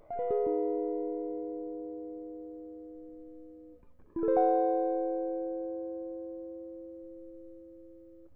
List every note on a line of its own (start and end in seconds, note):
0.12 2.42 F5
0.19 3.27 B4
0.31 2.34 G#4
0.48 2.68 D#4
4.18 8.36 E4
4.25 5.78 A4
4.32 7.68 C5
4.38 6.21 F#5